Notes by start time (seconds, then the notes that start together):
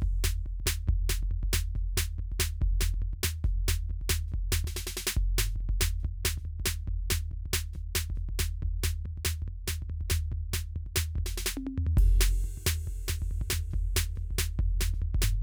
0.01 kick, snare, floor tom
0.24 snare, floor tom
0.46 kick, floor tom
0.60 kick
0.66 snare, floor tom
0.88 kick, floor tom
1.09 snare, floor tom
1.23 kick
1.31 floor tom
1.43 kick
1.53 snare, floor tom
1.75 kick, snare, floor tom
1.97 snare, floor tom
2.19 kick, floor tom
2.32 kick
2.40 snare, floor tom
2.61 kick, floor tom
2.81 snare, floor tom
2.94 kick
3.02 floor tom
3.13 kick
3.23 snare, floor tom
3.44 kick, snare, floor tom
3.68 snare, floor tom
3.90 kick, floor tom
4.02 kick
4.09 snare, floor tom
4.28 snare
4.32 kick, floor tom
4.52 snare, floor tom
4.65 kick, snare
4.76 snare
4.87 snare
5.07 snare
5.17 kick
5.38 snare, floor tom
5.47 snare
5.56 kick
5.61 floor tom
5.69 kick
5.81 snare, floor tom
6.00 snare, floor tom
6.05 kick
6.25 snare, floor tom
6.38 kick, snare
6.45 floor tom
6.60 kick
6.66 snare, floor tom
6.88 kick, floor tom
7.10 snare, floor tom
7.32 kick, floor tom
7.46 kick
7.53 snare, floor tom
7.73 kick, snare, floor tom
7.95 snare, floor tom
8.10 kick
8.15 snare, floor tom
8.29 kick
8.39 snare, floor tom
8.62 kick, floor tom
8.84 snare, floor tom
9.05 kick, floor tom
9.18 kick
9.25 snare, floor tom
9.42 kick
9.48 floor tom
9.68 snare, floor tom
9.82 kick
9.90 floor tom
10.01 kick
10.10 snare, floor tom
10.32 kick, floor tom
10.53 snare, floor tom
10.76 kick, floor tom
10.87 kick
10.96 snare, floor tom
11.16 kick, floor tom
11.26 snare
11.38 snare
11.46 snare
11.57 high tom
11.67 high tom
11.78 floor tom
11.87 floor tom
11.97 kick, ride
12.21 snare, crash
12.44 kick
12.58 kick
12.67 snare, floor tom
12.87 kick, floor tom
13.08 snare, floor tom
13.22 kick, snare
13.31 floor tom
13.42 kick
13.50 snare, floor tom
13.71 kick, snare, floor tom
13.96 snare, floor tom
14.16 kick, snare, floor tom
14.31 kick
14.38 snare, floor tom
14.59 kick, floor tom
14.81 snare, floor tom
14.94 kick, snare
15.02 floor tom
15.15 kick
15.22 snare, floor tom